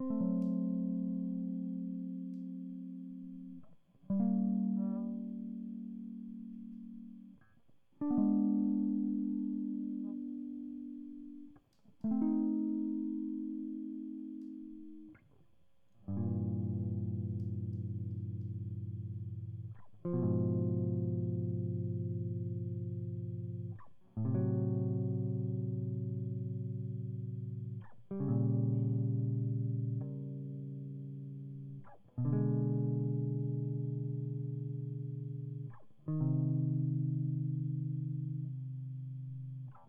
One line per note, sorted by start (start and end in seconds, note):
0.00 3.62 C4
0.10 3.48 A3
0.21 3.65 F#3
4.10 7.35 G3
4.20 7.34 A#3
8.01 11.57 D4
8.11 11.50 B3
8.18 10.20 G#3
12.04 15.10 A3
12.11 14.84 C4
12.21 15.16 D#4
16.09 19.74 G2
16.18 19.74 A#2
20.05 23.78 F3
20.14 23.75 B2
20.24 23.78 G#2
24.18 27.87 A2
24.26 27.81 C3
24.34 27.86 F#3
28.11 31.87 G3
28.21 31.83 C#3
28.29 30.05 A#2
32.19 35.76 B2
32.25 35.70 D3
32.33 35.73 G#3
36.08 39.04 D#3
36.21 39.72 C3